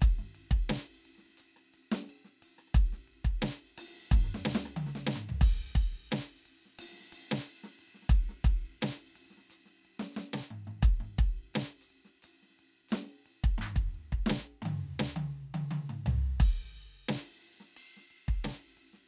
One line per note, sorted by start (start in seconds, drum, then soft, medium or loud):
0.01 kick loud
0.01 ride medium
0.18 mid tom soft
0.35 ride medium
0.51 kick loud
0.69 snare loud
0.69 ride medium
0.80 snare soft
1.01 hi-hat pedal soft
1.05 ride medium
1.15 snare soft
1.15 ride soft
1.26 cross-stick soft
1.26 snare soft
1.37 hi-hat pedal medium
1.37 ride soft
1.56 cross-stick soft
1.74 ride soft
1.92 snare loud
2.09 ride bell medium
2.25 snare soft
2.42 ride medium
2.58 cross-stick soft
2.67 cross-stick soft
2.75 kick loud
2.75 ride medium
2.93 snare soft
2.93 hi-hat pedal soft
3.08 ride soft
3.25 kick medium
3.42 snare loud
3.42 ride medium
3.78 cross-stick medium
3.78 ride loud
4.12 kick loud
4.12 mid tom loud
4.24 snare soft
4.35 snare medium
4.45 snare loud
4.55 snare loud
4.65 cross-stick medium
4.76 high tom loud
4.87 snare medium
4.95 snare medium
5.07 snare loud
5.16 mid tom medium
5.29 floor tom medium
5.41 kick loud
5.41 crash medium
5.75 kick loud
6.11 snare loud
6.11 ride medium
6.46 ride soft
6.65 snare soft
6.79 hi-hat pedal medium
6.79 ride loud
6.93 snare soft
7.00 snare soft
7.06 snare soft
7.12 ride medium
7.21 ride soft
7.31 snare loud
7.39 hi-hat pedal soft
7.48 ride soft
7.64 snare medium
7.79 ride soft
7.88 ride soft
7.95 snare soft
8.02 snare soft
8.10 kick loud
8.10 ride soft
8.29 snare soft
8.44 kick loud
8.44 ride medium
8.82 snare loud
8.82 hi-hat pedal medium
8.82 ride medium
9.16 ride medium
9.25 ride soft
9.30 snare soft
9.37 snare soft
9.50 hi-hat pedal medium
9.50 ride medium
9.66 snare soft
9.85 ride soft
10.00 snare medium
10.12 hi-hat pedal medium
10.17 snare medium
10.33 snare loud
10.51 mid tom medium
10.67 mid tom medium
10.82 kick loud
10.82 ride medium
11.00 mid tom medium
11.19 kick loud
11.19 ride medium
11.54 snare loud
11.54 hi-hat pedal medium
11.54 ride medium
11.81 hi-hat pedal soft
11.90 ride soft
12.05 snare soft
12.22 hi-hat pedal medium
12.22 ride medium
12.43 snare soft
12.50 snare soft
12.59 ride soft
12.89 snare loud
12.89 hi-hat pedal medium
12.89 ride medium
13.26 ride medium
13.44 kick loud
13.58 percussion loud
13.58 mid tom loud
13.76 kick medium
14.12 kick medium
14.26 kick soft
14.26 snare loud
14.30 snare loud
14.62 mid tom loud
14.62 high tom loud
14.99 snare loud
15.16 high tom loud
15.54 high tom loud
15.71 high tom loud
15.89 mid tom medium
16.06 floor tom loud
16.40 kick loud
16.40 crash medium
17.09 snare loud
17.09 ride loud
17.60 snare soft
17.77 ride bell medium
17.97 snare soft
18.11 ride soft
18.28 kick medium
18.44 snare loud
18.44 ride medium
18.55 snare soft
18.77 ride soft
18.93 snare soft